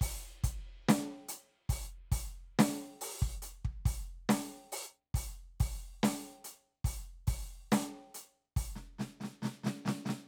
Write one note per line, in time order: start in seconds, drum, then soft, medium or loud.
0.01 open hi-hat loud
0.01 kick medium
0.44 open hi-hat loud
0.44 kick medium
0.89 open hi-hat loud
0.89 snare loud
1.29 open hi-hat loud
1.69 open hi-hat loud
1.69 kick medium
2.12 open hi-hat loud
2.12 kick medium
2.59 open hi-hat loud
2.59 snare loud
3.01 open hi-hat loud
3.22 kick medium
3.42 open hi-hat loud
3.65 kick medium
3.85 open hi-hat loud
3.85 kick medium
3.85 ride soft
4.29 open hi-hat loud
4.29 snare loud
4.35 cross-stick soft
4.72 open hi-hat loud
5.14 open hi-hat loud
5.14 kick medium
5.60 open hi-hat loud
5.60 kick medium
6.03 open hi-hat loud
6.03 snare loud
6.44 open hi-hat loud
6.84 open hi-hat loud
6.84 kick medium
7.27 open hi-hat loud
7.27 kick medium
7.72 open hi-hat loud
7.72 snare loud
8.14 open hi-hat loud
8.56 open hi-hat loud
8.56 kick medium
8.75 snare soft
8.98 snare soft
8.98 snare medium
9.20 snare soft
9.24 snare medium
9.42 snare medium
9.44 snare medium
9.63 snare soft
9.66 snare medium
9.85 snare medium
9.88 snare medium
10.05 snare medium
10.09 snare medium